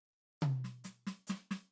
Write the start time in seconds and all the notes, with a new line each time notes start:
0.41 hi-hat pedal, high tom
0.64 snare
0.84 snare, hi-hat pedal
1.07 snare
1.27 snare, hi-hat pedal
1.51 snare